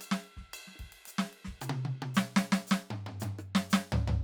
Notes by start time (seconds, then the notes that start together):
0.01 hi-hat pedal, ride bell
0.12 snare
0.24 ride
0.37 kick, snare
0.53 hi-hat pedal, ride bell
0.68 snare
0.76 kick, cross-stick, ride
0.86 snare
0.89 snare, ride
1.06 hi-hat pedal, ride
1.19 snare
1.25 snare
1.33 ride
1.45 kick, snare
1.61 hi-hat pedal, high tom
1.70 high tom
1.85 high tom
2.02 high tom
2.15 snare, hi-hat pedal
2.36 snare
2.52 snare
2.67 hi-hat pedal
2.71 snare
2.91 mid tom
3.07 mid tom
3.20 hi-hat pedal, mid tom
3.39 cross-stick
3.55 snare
3.70 snare, hi-hat pedal
3.92 floor tom
4.08 floor tom